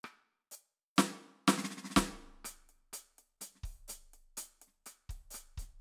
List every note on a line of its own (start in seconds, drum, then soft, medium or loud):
0.03 cross-stick medium
0.03 hi-hat pedal soft
0.51 hi-hat pedal medium
0.96 snare loud
0.96 hi-hat pedal soft
1.47 snare loud
1.47 hi-hat pedal medium
1.53 cross-stick medium
1.58 snare medium
1.64 snare medium
1.70 snare soft
1.77 snare soft
1.83 snare soft
1.84 snare medium
1.90 snare soft
1.96 kick soft
1.96 snare loud
2.44 closed hi-hat medium
2.44 cross-stick medium
2.69 closed hi-hat soft
2.93 closed hi-hat medium
2.93 cross-stick soft
3.18 closed hi-hat soft
3.41 closed hi-hat medium
3.41 snare soft
3.55 snare soft
3.63 kick soft
3.63 open hi-hat soft
3.88 closed hi-hat medium
3.88 snare soft
3.88 hi-hat pedal medium
4.13 closed hi-hat soft
4.37 closed hi-hat medium
4.37 cross-stick soft
4.61 closed hi-hat soft
4.67 snare soft
4.86 closed hi-hat medium
4.86 cross-stick soft
5.09 kick soft
5.09 snare soft
5.09 open hi-hat soft
5.30 closed hi-hat medium
5.30 cross-stick soft
5.30 hi-hat pedal medium
5.57 closed hi-hat soft
5.57 kick soft
5.57 snare soft